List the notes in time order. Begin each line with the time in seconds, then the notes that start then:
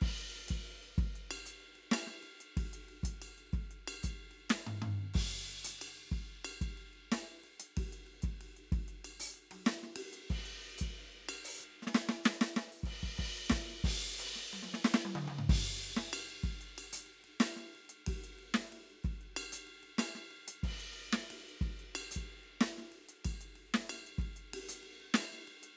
0.01 kick, crash
0.17 closed hi-hat
0.32 ride
0.48 kick, closed hi-hat
0.66 ride bell
0.83 closed hi-hat
0.98 kick, ride
1.15 closed hi-hat
1.31 ride bell
1.46 closed hi-hat
1.60 ride
1.75 ride
1.91 snare, ride bell
2.07 snare
2.23 ride
2.40 closed hi-hat
2.57 kick, ride
2.73 closed hi-hat
2.89 ride
3.03 kick, closed hi-hat
3.22 ride bell
3.38 closed hi-hat
3.53 kick, ride
3.71 closed hi-hat
3.88 ride bell
4.03 closed hi-hat, kick
4.31 ride
4.50 snare, hi-hat pedal, ride bell
4.67 floor tom
4.82 floor tom
5.14 kick, ride
5.32 closed hi-hat
5.48 ride
5.64 closed hi-hat
5.81 ride bell
5.97 closed hi-hat
6.12 kick, ride
6.28 closed hi-hat
6.45 ride bell
6.61 kick, closed hi-hat
6.77 ride
6.93 ride
7.12 snare, ride bell
7.44 ride
7.60 closed hi-hat
7.77 kick, ride
7.92 closed hi-hat
8.07 ride
8.22 kick, closed hi-hat
8.41 ride
8.57 closed hi-hat
8.72 kick, ride
8.88 closed hi-hat
9.05 ride bell
9.20 open hi-hat
9.34 ride
9.51 cross-stick, high tom, ride, floor tom
9.65 snare, hi-hat pedal
9.83 snare
9.96 ride
10.13 closed hi-hat
10.30 kick, crash
10.46 closed hi-hat
10.61 ride bell
10.78 closed hi-hat, kick
10.96 ride
11.12 closed hi-hat
11.29 ride bell
11.44 open hi-hat
11.60 hi-hat pedal, ride
11.82 snare
11.87 snare
11.94 snare
12.09 snare
12.24 snare, hi-hat pedal
12.41 snare
12.56 snare
12.72 open hi-hat
12.83 kick, crash
13.01 kick, crash
13.17 kick, crash
13.32 open hi-hat
13.50 kick, snare
13.84 kick, ride
14.19 hi-hat pedal, crash
14.36 snare
14.53 high tom
14.63 snare
14.74 snare
14.84 snare
14.94 snare
15.05 high tom
15.15 mid tom
15.28 mid tom
15.39 floor tom
15.49 kick, ride
15.74 kick
15.97 snare, hi-hat pedal
16.13 ride bell
16.28 closed hi-hat
16.44 kick, ride
16.61 closed hi-hat
16.78 ride bell
16.93 closed hi-hat
17.06 ride
17.24 ride
17.40 snare, hi-hat pedal, ride bell
17.56 snare
17.75 ride
17.89 closed hi-hat
18.07 kick, ride
18.24 closed hi-hat
18.39 ride
18.54 snare
18.72 cross-stick, ride
18.89 closed hi-hat
19.04 kick, ride
19.21 closed hi-hat
19.37 ride bell
19.52 closed hi-hat
19.67 ride
19.83 ride
19.98 snare, ride bell
20.15 snare
20.31 ride
20.48 closed hi-hat
20.63 kick, crash
20.80 closed hi-hat
20.93 ride
21.13 snare
21.30 ride
21.49 closed hi-hat
21.61 kick, ride
21.79 closed hi-hat
21.95 ride bell
22.11 closed hi-hat
22.16 kick
22.30 ride
22.43 ride
22.61 snare, ride
22.78 snare
22.92 ride
23.09 closed hi-hat
23.25 kick, ride bell
23.41 closed hi-hat
23.56 ride
23.74 snare
23.90 ride bell
24.06 closed hi-hat
24.18 kick, ride
24.36 closed hi-hat
24.53 ride
24.69 closed hi-hat
24.83 ride
25.00 ride
25.14 snare, ride bell
25.32 snare
25.48 ride
25.63 closed hi-hat